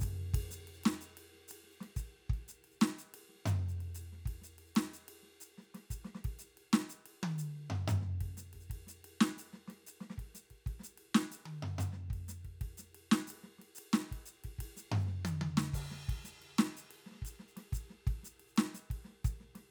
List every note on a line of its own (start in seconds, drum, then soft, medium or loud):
0.01 kick medium
0.01 hi-hat pedal medium
0.01 ride medium
0.35 kick medium
0.35 ride loud
0.51 snare soft
0.51 hi-hat pedal medium
0.68 ride soft
0.75 hi-hat pedal soft
0.85 snare loud
0.85 ride medium
1.02 hi-hat pedal medium
1.18 ride medium
1.35 snare soft
1.49 hi-hat pedal medium
1.49 ride medium
1.64 snare soft
1.72 hi-hat pedal soft
1.81 snare soft
1.81 ride soft
1.97 kick soft
1.97 hi-hat pedal medium
1.97 ride soft
2.19 snare soft
2.30 kick medium
2.30 ride soft
2.49 snare soft
2.49 hi-hat pedal medium
2.65 ride soft
2.72 hi-hat pedal soft
2.82 snare loud
2.82 ride soft
2.99 hi-hat pedal medium
3.15 ride medium
3.30 snare soft
3.36 snare soft
3.47 floor tom loud
3.47 hi-hat pedal medium
3.61 snare soft
3.69 hi-hat pedal soft
3.79 snare soft
3.79 ride soft
3.95 hi-hat pedal medium
3.95 ride medium
4.13 snare soft
4.26 kick medium
4.26 ride medium
4.42 snare soft
4.42 hi-hat pedal medium
4.47 snare soft
4.59 ride soft
4.67 hi-hat pedal soft
4.76 snare loud
4.76 ride medium
4.94 hi-hat pedal medium
5.09 ride medium
5.23 snare soft
5.41 hi-hat pedal medium
5.41 ride soft
5.59 snare soft
5.59 hi-hat pedal soft
5.75 snare soft
5.75 ride soft
5.91 kick soft
5.91 hi-hat pedal medium
5.91 ride soft
6.05 snare soft
6.16 snare soft
6.25 kick medium
6.25 ride medium
6.40 snare soft
6.40 hi-hat pedal medium
6.58 ride soft
6.74 snare loud
6.90 hi-hat pedal medium
7.07 ride medium
7.24 high tom loud
7.39 hi-hat pedal medium
7.39 ride soft
7.56 snare soft
7.71 floor tom loud
7.89 floor tom loud
7.89 hi-hat pedal medium
8.02 snare soft
8.21 kick soft
8.21 ride medium
8.38 snare soft
8.38 hi-hat pedal medium
8.54 kick soft
8.54 ride soft
8.61 hi-hat pedal soft
8.71 kick soft
8.71 ride medium
8.87 snare soft
8.87 hi-hat pedal medium
9.05 ride medium
9.22 snare loud
9.39 hi-hat pedal medium
9.39 ride medium
9.54 snare soft
9.68 snare soft
9.68 ride soft
9.87 hi-hat pedal medium
9.87 ride soft
10.01 snare soft
10.11 snare soft
10.19 kick soft
10.19 ride soft
10.35 snare soft
10.35 hi-hat pedal medium
10.51 kick soft
10.51 ride soft
10.67 kick soft
10.67 ride soft
10.80 snare soft
10.80 hi-hat pedal medium
10.98 ride soft
11.15 snare loud
11.32 hi-hat pedal medium
11.32 ride soft
11.46 high tom medium
11.63 floor tom medium
11.79 floor tom loud
11.79 hi-hat pedal medium
11.93 snare soft
12.11 kick soft
12.11 ride soft
12.29 snare soft
12.29 hi-hat pedal medium
12.45 kick soft
12.45 ride soft
12.62 kick soft
12.62 ride medium
12.78 snare soft
12.78 hi-hat pedal medium
12.95 ride soft
13.12 snare loud
13.28 hi-hat pedal medium
13.28 ride medium
13.44 snare soft
13.59 snare soft
13.59 ride soft
13.76 hi-hat pedal medium
13.76 ride medium
13.94 snare loud
14.12 kick soft
14.12 ride medium
14.26 snare soft
14.26 hi-hat pedal medium
14.45 kick soft
14.45 ride soft
14.59 kick soft
14.59 ride medium
14.77 snare soft
14.77 hi-hat pedal medium
14.85 snare soft
14.92 floor tom loud
15.01 hi-hat pedal soft
15.08 snare soft
15.26 hi-hat pedal medium
15.26 high tom loud
15.42 high tom loud
15.58 snare loud
15.74 kick soft
15.74 hi-hat pedal medium
15.74 crash medium
15.92 snare soft
16.09 kick medium
16.09 ride medium
16.25 snare soft
16.25 hi-hat pedal medium
16.43 ride soft
16.59 snare loud
16.59 ride soft
16.77 hi-hat pedal medium
16.92 ride medium
17.07 snare soft
17.12 snare soft
17.15 snare soft
17.23 kick soft
17.23 hi-hat pedal medium
17.23 ride soft
17.40 snare soft
17.49 hi-hat pedal soft
17.57 snare soft
17.57 ride medium
17.73 kick medium
17.73 hi-hat pedal medium
17.73 ride soft
17.91 snare soft
18.08 kick medium
18.08 ride soft
18.24 snare soft
18.24 hi-hat pedal medium
18.40 ride soft
18.49 hi-hat pedal soft
18.57 snare loud
18.57 ride soft
18.75 snare soft
18.75 hi-hat pedal medium
18.91 kick soft
18.91 ride soft
19.05 snare soft
19.09 snare soft
19.25 kick medium
19.25 hi-hat pedal medium
19.25 ride soft
19.41 snare soft
19.56 snare soft
19.56 ride soft